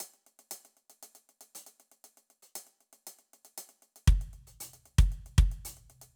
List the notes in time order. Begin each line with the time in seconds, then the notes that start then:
0.01 closed hi-hat
0.14 closed hi-hat
0.26 closed hi-hat
0.39 closed hi-hat
0.51 closed hi-hat
0.65 closed hi-hat
0.77 closed hi-hat
0.90 closed hi-hat
1.03 closed hi-hat
1.15 closed hi-hat
1.29 closed hi-hat
1.41 closed hi-hat
1.55 closed hi-hat
1.67 closed hi-hat
1.80 closed hi-hat
1.92 closed hi-hat
2.04 closed hi-hat
2.17 closed hi-hat
2.30 closed hi-hat
2.42 closed hi-hat
2.55 closed hi-hat
2.67 closed hi-hat
2.81 closed hi-hat
2.93 closed hi-hat
3.07 closed hi-hat
3.19 closed hi-hat
3.33 closed hi-hat
3.45 closed hi-hat
3.58 closed hi-hat
3.69 closed hi-hat
3.82 closed hi-hat
3.96 closed hi-hat
4.08 kick, closed hi-hat
4.21 closed hi-hat
4.33 closed hi-hat
4.47 closed hi-hat
4.60 closed hi-hat
4.73 closed hi-hat
4.86 closed hi-hat
4.98 kick, closed hi-hat
5.12 closed hi-hat
5.26 closed hi-hat
5.38 kick, closed hi-hat
5.51 closed hi-hat
5.65 closed hi-hat
5.77 closed hi-hat
5.90 closed hi-hat
6.01 closed hi-hat